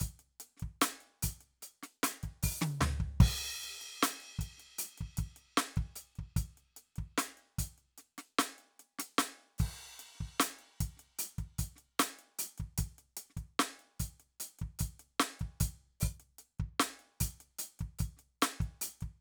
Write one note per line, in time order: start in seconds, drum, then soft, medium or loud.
0.01 closed hi-hat medium
0.01 kick medium
0.20 closed hi-hat soft
0.41 closed hi-hat medium
0.58 snare soft
0.58 closed hi-hat soft
0.63 kick soft
0.82 closed hi-hat loud
0.82 snare loud
1.01 closed hi-hat soft
1.23 closed hi-hat loud
1.23 kick medium
1.42 closed hi-hat soft
1.62 closed hi-hat medium
1.62 snare soft
1.84 snare soft
1.84 closed hi-hat medium
2.04 closed hi-hat loud
2.04 snare loud
2.24 kick soft
2.24 closed hi-hat soft
2.43 open hi-hat loud
2.43 kick medium
2.43 snare soft
2.62 snare medium
2.62 high tom loud
2.82 snare loud
2.82 floor tom loud
3.01 kick medium
3.21 kick loud
3.21 crash loud
3.64 closed hi-hat medium
3.82 closed hi-hat medium
4.04 closed hi-hat loud
4.04 snare loud
4.21 closed hi-hat soft
4.40 kick medium
4.40 closed hi-hat medium
4.58 snare soft
4.58 closed hi-hat soft
4.79 closed hi-hat loud
4.99 kick soft
4.99 closed hi-hat soft
5.18 kick medium
5.18 closed hi-hat medium
5.37 closed hi-hat soft
5.58 closed hi-hat medium
5.58 snare loud
5.77 kick medium
5.77 closed hi-hat soft
5.97 closed hi-hat medium
6.16 kick soft
6.16 closed hi-hat soft
6.37 closed hi-hat medium
6.37 kick medium
6.58 closed hi-hat soft
6.77 closed hi-hat medium
6.97 kick soft
6.97 closed hi-hat soft
7.19 closed hi-hat loud
7.19 snare loud
7.38 closed hi-hat soft
7.59 closed hi-hat loud
7.59 kick medium
7.79 closed hi-hat soft
7.99 snare soft
7.99 closed hi-hat medium
8.19 snare medium
8.19 closed hi-hat medium
8.40 closed hi-hat medium
8.40 snare loud
8.59 closed hi-hat soft
8.80 closed hi-hat soft
9.00 snare medium
9.00 closed hi-hat loud
9.19 closed hi-hat medium
9.19 snare loud
9.59 kick medium
9.59 hi-hat pedal medium
9.59 crash medium
9.79 closed hi-hat soft
10.00 closed hi-hat medium
10.16 snare soft
10.21 kick soft
10.41 closed hi-hat loud
10.41 snare loud
10.60 closed hi-hat soft
10.81 kick medium
10.81 closed hi-hat loud
10.98 snare soft
10.98 closed hi-hat soft
11.20 closed hi-hat loud
11.39 kick soft
11.39 closed hi-hat soft
11.59 closed hi-hat medium
11.59 kick medium
11.77 snare soft
11.77 closed hi-hat soft
12.00 closed hi-hat loud
12.00 snare loud
12.20 closed hi-hat soft
12.40 closed hi-hat loud
12.59 kick soft
12.59 closed hi-hat soft
12.79 kick medium
12.79 closed hi-hat loud
12.99 closed hi-hat soft
13.18 closed hi-hat loud
13.31 snare soft
13.38 kick soft
13.38 closed hi-hat soft
13.60 closed hi-hat medium
13.60 snare loud
13.80 closed hi-hat soft
14.01 closed hi-hat medium
14.01 kick medium
14.21 closed hi-hat soft
14.41 closed hi-hat loud
14.60 kick soft
14.60 closed hi-hat soft
14.80 closed hi-hat loud
14.80 kick medium
15.00 closed hi-hat soft
15.21 closed hi-hat medium
15.21 snare loud
15.40 kick soft
15.40 closed hi-hat soft
15.61 closed hi-hat loud
15.61 kick medium
16.01 open hi-hat loud
16.01 kick medium
16.01 hi-hat pedal medium
16.21 closed hi-hat soft
16.39 closed hi-hat medium
16.60 kick medium
16.60 closed hi-hat soft
16.69 kick soft
16.80 closed hi-hat loud
16.80 snare loud
17.00 closed hi-hat soft
17.21 closed hi-hat loud
17.21 kick medium
17.41 closed hi-hat soft
17.60 closed hi-hat loud
17.80 kick soft
17.80 closed hi-hat soft
18.00 closed hi-hat medium
18.00 kick medium
18.00 snare soft
18.18 snare soft
18.18 closed hi-hat soft
18.43 closed hi-hat medium
18.43 snare loud
18.61 kick medium
18.61 closed hi-hat soft
18.82 closed hi-hat loud
19.02 kick soft
19.02 closed hi-hat soft